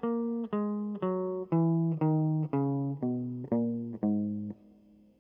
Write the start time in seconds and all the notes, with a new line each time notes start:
0.04 A#3
0.54 G#3
1.04 F#3
1.54 E3
2.03 D#3
2.55 C#3
3.04 B2
3.54 A#2
4.05 G#2